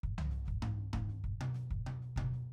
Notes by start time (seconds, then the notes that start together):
0.03 kick
0.18 floor tom
0.29 snare
0.44 kick, snare
0.62 mid tom
0.93 kick, mid tom
1.08 snare
1.24 kick
1.41 high tom
1.53 snare
1.70 kick
1.86 high tom
2.01 snare
2.16 kick, high tom
2.32 snare